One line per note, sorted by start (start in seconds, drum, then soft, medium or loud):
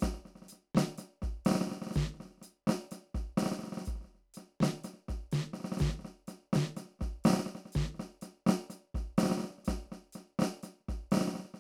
0.01 kick soft
0.01 snare medium
0.01 hi-hat pedal medium
0.15 snare soft
0.26 snare soft
0.36 snare soft
0.43 snare soft
0.47 snare soft
0.47 hi-hat pedal medium
0.53 snare soft
0.76 snare medium
0.78 snare loud
0.98 snare soft
0.98 hi-hat pedal medium
1.23 kick soft
1.23 snare soft
1.46 snare medium
1.46 hi-hat pedal medium
1.49 snare medium
1.52 snare medium
1.56 snare medium
1.62 snare medium
1.68 snare soft
1.70 snare soft
1.72 snare soft
1.78 snare soft
1.88 snare soft
1.92 snare soft
1.92 hi-hat pedal medium
1.97 kick soft
1.97 snare medium
2.15 snare soft
2.21 snare soft
2.26 snare soft
2.31 snare soft
2.35 snare soft
2.39 snare soft
2.43 snare soft
2.43 hi-hat pedal medium
2.68 snare medium
2.70 snare medium
2.82 snare soft
2.92 snare soft
2.92 hi-hat pedal medium
3.01 snare soft
3.07 snare soft
3.15 kick soft
3.15 snare soft
3.38 snare medium
3.38 hi-hat pedal medium
3.43 snare medium
3.47 snare medium
3.53 snare medium
3.60 snare soft
3.64 snare soft
3.68 snare soft
3.73 snare soft
3.78 snare soft
3.82 snare soft
3.82 hi-hat pedal medium
3.88 kick soft
3.88 snare soft
3.96 snare soft
4.02 snare soft
4.05 snare soft
4.16 snare soft
4.35 snare soft
4.35 hi-hat pedal medium
4.61 snare medium
4.64 snare medium
4.84 snare soft
4.84 hi-hat pedal medium
4.94 snare soft
5.09 kick soft
5.09 snare soft
5.32 snare medium
5.32 hi-hat pedal medium
5.54 snare soft
5.61 snare soft
5.65 snare soft
5.73 snare soft
5.78 snare soft
5.78 hi-hat pedal medium
5.81 kick soft
5.81 snare medium
5.88 kick soft
5.88 snare soft
6.00 snare soft
6.06 snare soft
6.28 snare soft
6.28 hi-hat pedal medium
6.54 snare medium
6.57 snare medium
6.77 snare soft
6.77 hi-hat pedal medium
6.86 snare soft
6.92 snare soft
7.00 snare soft
7.02 kick soft
7.02 snare soft
7.25 snare loud
7.25 hi-hat pedal medium
7.28 snare medium
7.31 snare medium
7.34 snare medium
7.37 snare soft
7.40 snare medium
7.47 snare soft
7.56 snare soft
7.66 snare soft
7.73 kick soft
7.73 snare medium
7.73 hi-hat pedal medium
7.85 snare soft
7.95 snare soft
8.00 snare soft
8.08 snare soft
8.22 snare soft
8.22 hi-hat pedal medium
8.47 snare medium
8.50 snare medium
8.71 snare soft
8.71 hi-hat pedal medium
8.84 snare soft
8.95 kick soft
8.95 snare soft
9.19 snare medium
9.19 hi-hat pedal medium
9.24 snare medium
9.26 snare medium
9.31 snare soft
9.32 snare medium
9.38 snare soft
9.45 snare soft
9.51 snare soft
9.59 snare soft
9.65 snare soft
9.65 hi-hat pedal medium
9.69 kick soft
9.69 snare medium
9.79 snare soft
9.87 snare soft
9.92 snare soft
10.13 snare soft
10.13 hi-hat pedal medium
10.40 snare medium
10.43 snare medium
10.64 snare soft
10.64 hi-hat pedal medium
10.81 snare soft
10.89 kick soft
10.89 snare soft
11.12 snare medium
11.12 hi-hat pedal medium
11.15 snare medium
11.18 snare medium
11.22 snare medium
11.26 snare soft
11.28 snare medium
11.34 snare soft
11.36 snare soft
11.40 snare soft
11.46 snare soft
11.55 snare soft